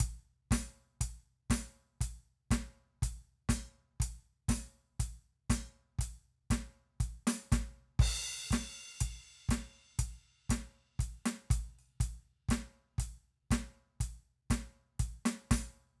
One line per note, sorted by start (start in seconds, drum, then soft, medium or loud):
0.00 kick medium
0.00 open hi-hat loud
0.51 kick medium
0.51 snare medium
0.51 open hi-hat loud
1.01 kick medium
1.01 closed hi-hat loud
1.50 kick medium
1.50 snare medium
1.50 open hi-hat loud
2.01 kick medium
2.01 open hi-hat loud
2.51 kick medium
2.51 snare medium
2.51 open hi-hat loud
3.02 kick medium
3.02 open hi-hat loud
3.49 open hi-hat loud
3.49 kick medium
3.49 snare medium
4.00 kick medium
4.00 closed hi-hat loud
4.48 kick medium
4.48 snare medium
4.48 open hi-hat loud
4.99 kick medium
4.99 open hi-hat loud
5.50 open hi-hat loud
5.50 kick medium
5.50 snare medium
5.99 kick medium
5.99 open hi-hat loud
6.50 kick medium
6.50 snare medium
6.50 open hi-hat loud
7.00 kick medium
7.00 open hi-hat medium
7.27 snare loud
7.27 open hi-hat loud
7.52 kick medium
7.52 snare medium
7.52 open hi-hat loud
7.99 kick loud
7.99 crash loud
8.51 kick medium
8.51 snare medium
8.51 open hi-hat loud
9.00 kick medium
9.00 closed hi-hat loud
9.49 kick medium
9.49 snare medium
9.49 open hi-hat loud
9.99 kick medium
9.99 closed hi-hat loud
10.49 kick medium
10.49 snare medium
10.49 closed hi-hat loud
10.99 kick medium
10.99 open hi-hat loud
11.25 snare medium
11.25 open hi-hat loud
11.50 kick medium
11.50 cross-stick soft
11.50 open hi-hat loud
11.79 open hi-hat soft
12.00 kick medium
12.00 open hi-hat loud
12.49 kick medium
12.49 snare medium
12.49 open hi-hat loud
12.98 kick medium
12.98 open hi-hat loud
13.51 kick medium
13.51 snare medium
13.51 open hi-hat loud
14.00 kick medium
14.00 open hi-hat loud
14.50 kick medium
14.50 snare medium
14.50 open hi-hat loud
14.99 kick medium
14.99 open hi-hat loud
15.25 snare loud
15.25 open hi-hat loud
15.51 kick medium
15.51 snare medium
15.51 open hi-hat loud